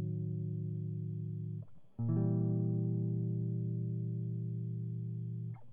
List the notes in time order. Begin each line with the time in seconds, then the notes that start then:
2.00 A#2
2.10 E3
2.17 G3